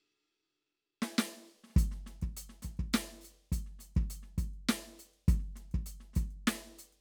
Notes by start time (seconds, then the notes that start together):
1.02 snare
1.18 snare
1.32 snare
1.45 hi-hat pedal
1.63 snare
1.67 snare
1.70 snare
1.74 closed hi-hat, kick, snare
1.91 snare
2.06 snare, closed hi-hat
2.21 kick, closed hi-hat
2.37 closed hi-hat
2.49 snare
2.62 closed hi-hat, kick, snare
2.77 kick, closed hi-hat
2.93 closed hi-hat, snare
3.21 closed hi-hat, hi-hat pedal
3.37 closed hi-hat
3.52 closed hi-hat, kick
3.66 snare
3.79 closed hi-hat, snare
3.95 kick, closed hi-hat
4.10 closed hi-hat
4.23 snare
4.38 closed hi-hat, kick
4.53 closed hi-hat
4.69 closed hi-hat, snare
4.99 closed hi-hat
5.13 closed hi-hat
5.28 closed hi-hat, kick
5.39 snare
5.56 snare, closed hi-hat
5.71 kick, closed hi-hat
5.86 closed hi-hat
6.00 snare
6.13 closed hi-hat, kick, snare
6.30 closed hi-hat
6.47 closed hi-hat, snare
6.55 snare
6.78 closed hi-hat
6.92 closed hi-hat